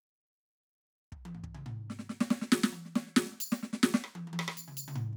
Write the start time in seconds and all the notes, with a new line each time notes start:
1.12 kick
1.26 high tom
1.35 floor tom
1.44 kick
1.55 mid tom
1.66 floor tom
1.90 snare
1.99 snare
2.10 snare
2.21 snare
2.31 snare
2.42 snare
2.52 snare
2.64 snare
2.73 high tom
2.86 snare
2.96 snare
3.07 snare
3.17 snare
3.26 snare
3.32 snare
3.37 snare, percussion
3.52 snare
3.63 snare
3.83 snare
3.94 snare
4.04 high tom
4.16 high tom
4.28 high tom
4.33 high tom
4.40 high tom
4.48 high tom
4.58 percussion
4.68 mid tom
4.77 percussion
4.88 mid tom
4.96 floor tom
5.13 kick